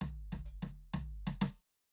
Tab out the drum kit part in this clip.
Hi-hat    |---p--------|
Snare     |o-o-o-o-oo--|
Floor tom |o-o-o-o-----|